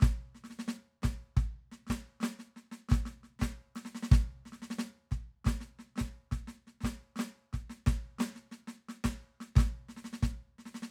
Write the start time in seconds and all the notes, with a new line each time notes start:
0.01 snare
0.03 kick, snare
0.36 snare
0.45 snare
0.51 snare
0.60 snare
0.69 snare
1.03 kick, snare
1.37 kick, snare
1.72 snare
1.88 kick, snare
1.91 snare
2.21 snare
2.24 snare
2.40 snare
2.57 snare
2.72 snare
2.90 kick, snare
2.92 snare
3.06 snare
3.24 snare
3.40 snare
3.42 kick, snare
3.76 snare, hi-hat pedal
3.86 snare
3.96 snare
4.03 snare
4.12 kick, snare
4.46 snare
4.53 snare
4.63 snare
4.71 snare
4.79 snare
5.12 kick, snare
5.45 kick, snare
5.48 snare
5.61 snare
5.80 snare
5.97 snare
5.99 kick, snare
6.32 kick, snare
6.48 snare
6.68 snare
6.81 kick, snare
6.85 snare
7.17 snare
7.20 snare
7.54 kick, snare
7.70 snare
7.87 kick, snare
8.19 snare
8.21 snare
8.36 snare
8.52 snare
8.68 snare
8.89 snare
9.05 kick, snare
9.41 snare
9.56 kick, snare
9.59 snare
9.89 snare
9.97 snare
10.05 snare
10.14 snare
10.23 kick, snare
10.59 snare
10.66 snare
10.75 snare
10.83 snare